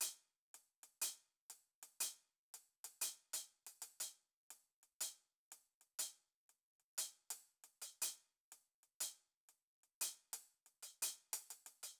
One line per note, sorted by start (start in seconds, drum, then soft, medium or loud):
0.01 closed hi-hat loud
0.55 closed hi-hat soft
0.83 open hi-hat soft
1.02 closed hi-hat loud
1.50 closed hi-hat medium
1.83 closed hi-hat soft
2.01 closed hi-hat loud
2.54 closed hi-hat medium
2.85 closed hi-hat medium
3.02 closed hi-hat loud
3.34 closed hi-hat loud
3.67 open hi-hat medium
3.82 closed hi-hat medium
4.00 closed hi-hat loud
4.51 open hi-hat soft
4.83 closed hi-hat soft
5.01 closed hi-hat loud
5.52 closed hi-hat soft
5.81 closed hi-hat soft
5.99 closed hi-hat loud
6.50 closed hi-hat soft
6.80 closed hi-hat soft
6.98 closed hi-hat loud
7.31 closed hi-hat medium
7.64 closed hi-hat soft
7.82 closed hi-hat medium
8.02 closed hi-hat loud
8.52 closed hi-hat soft
8.83 closed hi-hat soft
9.01 closed hi-hat loud
9.49 closed hi-hat soft
9.84 closed hi-hat soft
10.01 closed hi-hat loud
10.33 closed hi-hat medium
10.66 closed hi-hat soft
10.83 closed hi-hat medium
11.03 closed hi-hat loud
11.33 closed hi-hat loud
11.51 closed hi-hat medium
11.66 closed hi-hat soft
11.83 closed hi-hat medium